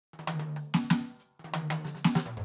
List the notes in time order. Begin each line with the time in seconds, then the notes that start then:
0.13 high tom
0.19 high tom
0.27 high tom
0.40 high tom
0.56 cross-stick
0.74 snare
0.90 snare
1.19 hi-hat pedal
1.39 high tom
1.44 high tom
1.54 high tom
1.70 high tom
1.85 snare
1.95 snare
2.04 snare
2.15 snare
2.26 mid tom
2.37 floor tom